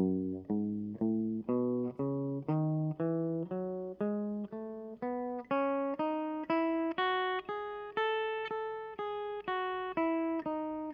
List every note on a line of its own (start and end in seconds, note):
0.00 0.46 F#2
0.52 1.01 G#2
1.04 1.44 A2
1.51 1.92 B2
2.01 2.45 C#3
2.50 2.96 D#3
3.01 3.48 E3
3.52 3.97 F#3
4.02 4.49 G#3
4.54 4.99 A3
5.04 5.45 B3
5.52 5.97 C#4
6.00 6.47 D#4
6.51 6.94 E4
6.99 7.42 F#4
7.50 7.95 G#4
7.98 8.51 A4
8.52 8.98 A4
9.00 9.44 G#4
9.49 9.95 F#4
9.98 10.44 E4
10.47 10.94 D#4